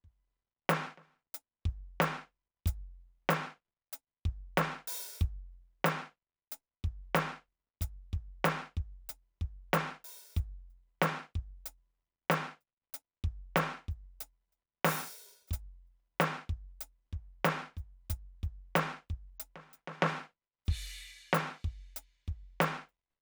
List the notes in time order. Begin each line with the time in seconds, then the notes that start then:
0.09 kick
0.69 closed hi-hat, snare
0.97 snare
1.34 closed hi-hat
1.65 kick
1.69 closed hi-hat
2.00 closed hi-hat, snare
2.66 closed hi-hat, kick
3.29 closed hi-hat, snare
3.93 closed hi-hat
4.25 kick, closed hi-hat
4.57 closed hi-hat, snare
4.87 open hi-hat
5.20 kick, hi-hat pedal
5.51 closed hi-hat
5.84 closed hi-hat, snare
6.52 closed hi-hat
6.84 kick, closed hi-hat
7.15 closed hi-hat, snare
7.81 closed hi-hat, kick
8.13 kick, closed hi-hat
8.44 closed hi-hat, snare
8.77 kick
9.09 closed hi-hat
9.41 kick, closed hi-hat
9.73 closed hi-hat, snare
10.04 open hi-hat
10.36 closed hi-hat, kick, hi-hat pedal
10.70 closed hi-hat
11.02 closed hi-hat, snare
11.34 kick, closed hi-hat
11.66 closed hi-hat
12.30 closed hi-hat, snare
12.61 closed hi-hat
12.94 closed hi-hat
13.24 kick, closed hi-hat
13.56 closed hi-hat, snare
13.62 snare
13.88 kick, closed hi-hat
14.20 closed hi-hat
14.52 closed hi-hat
14.85 open hi-hat, snare
15.47 kick, hi-hat pedal
15.53 closed hi-hat
15.87 closed hi-hat
16.20 closed hi-hat, snare
16.49 kick
16.81 closed hi-hat
17.13 kick, closed hi-hat
17.44 closed hi-hat, snare
17.52 snare
17.77 kick, closed hi-hat
18.10 closed hi-hat, kick
18.43 kick, closed hi-hat
18.75 closed hi-hat, snare
19.09 kick, closed hi-hat
19.40 closed hi-hat
19.56 snare
19.73 closed hi-hat
19.87 snare
20.02 snare
20.65 kick, hi-hat pedal, crash
21.33 closed hi-hat, snare
21.64 kick
21.96 closed hi-hat
22.27 kick, closed hi-hat
22.60 closed hi-hat, snare
22.89 closed hi-hat